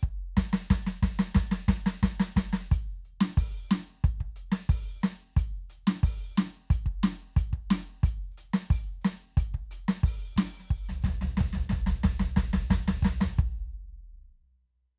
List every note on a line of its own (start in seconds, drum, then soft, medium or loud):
0.01 kick medium
0.01 hi-hat pedal soft
0.37 closed hi-hat loud
0.37 kick loud
0.37 snare loud
0.53 closed hi-hat loud
0.53 snare loud
0.71 closed hi-hat loud
0.71 kick loud
0.71 snare loud
0.87 closed hi-hat loud
0.87 snare loud
1.03 closed hi-hat loud
1.03 kick loud
1.03 snare loud
1.19 closed hi-hat loud
1.19 snare loud
1.35 closed hi-hat loud
1.35 kick loud
1.35 snare loud
1.52 closed hi-hat loud
1.52 snare loud
1.69 closed hi-hat loud
1.69 kick loud
1.69 snare loud
1.87 closed hi-hat loud
1.87 snare loud
2.03 closed hi-hat loud
2.03 kick loud
2.03 snare loud
2.20 closed hi-hat loud
2.20 snare loud
2.37 closed hi-hat loud
2.37 kick medium
2.37 snare loud
2.53 closed hi-hat loud
2.53 snare loud
2.72 closed hi-hat loud
2.72 kick loud
3.05 closed hi-hat soft
3.21 snare loud
3.38 open hi-hat loud
3.38 kick loud
3.69 closed hi-hat loud
3.69 snare loud
3.69 hi-hat pedal medium
4.04 closed hi-hat medium
4.04 kick loud
4.21 kick medium
4.21 crash soft
4.36 closed hi-hat medium
4.52 snare loud
4.70 open hi-hat loud
4.70 kick loud
5.02 closed hi-hat loud
5.02 snare loud
5.02 hi-hat pedal soft
5.37 closed hi-hat loud
5.37 kick loud
5.70 closed hi-hat medium
5.88 snare loud
6.04 open hi-hat loud
6.04 kick loud
6.36 closed hi-hat loud
6.36 snare loud
6.36 hi-hat pedal soft
6.71 closed hi-hat loud
6.71 kick loud
6.86 kick medium
7.03 closed hi-hat loud
7.03 snare loud
7.03 hi-hat pedal soft
7.37 open hi-hat loud
7.37 kick loud
7.53 kick medium
7.71 open hi-hat loud
7.71 snare loud
7.79 hi-hat pedal soft
8.04 closed hi-hat loud
8.04 kick loud
8.32 hi-hat pedal soft
8.38 closed hi-hat loud
8.54 snare loud
8.71 open hi-hat loud
8.71 kick loud
9.02 snare loud
9.02 hi-hat pedal soft
9.06 closed hi-hat loud
9.38 closed hi-hat loud
9.38 kick loud
9.55 kick medium
9.71 closed hi-hat loud
9.89 snare loud
10.04 open hi-hat loud
10.04 kick loud
10.37 open hi-hat loud
10.37 kick medium
10.37 snare loud
10.60 snare soft
10.71 kick medium
10.89 snare medium
10.89 floor tom loud
11.03 kick medium
11.03 snare medium
11.03 hi-hat pedal medium
11.07 floor tom loud
11.22 snare medium
11.22 floor tom loud
11.38 kick loud
11.38 snare loud
11.38 floor tom loud
11.38 hi-hat pedal medium
11.53 snare medium
11.53 floor tom loud
11.70 kick loud
11.70 snare loud
11.70 floor tom loud
11.70 hi-hat pedal medium
11.87 snare loud
11.87 floor tom loud
12.04 kick loud
12.04 snare loud
12.04 floor tom loud
12.04 hi-hat pedal medium
12.20 snare loud
12.20 floor tom loud
12.37 kick loud
12.37 snare loud
12.37 floor tom loud
12.37 hi-hat pedal medium
12.54 snare loud
12.54 floor tom loud
12.70 kick loud
12.70 snare loud
12.70 hi-hat pedal medium
12.70 floor tom loud
12.88 snare loud
12.88 floor tom loud
13.01 kick loud
13.01 snare loud
13.01 floor tom loud
13.01 hi-hat pedal medium
13.21 snare loud
13.21 floor tom loud
13.36 kick loud
13.36 hi-hat pedal medium